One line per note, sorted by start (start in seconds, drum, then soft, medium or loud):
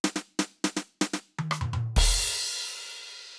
0.04 snare loud
0.16 snare medium
0.39 snare loud
0.64 snare loud
0.77 snare loud
1.01 snare loud
1.13 snare medium
1.39 high tom loud
1.51 cross-stick loud
1.61 mid tom loud
1.73 mid tom loud
1.96 kick loud
1.96 ride loud
1.96 crash loud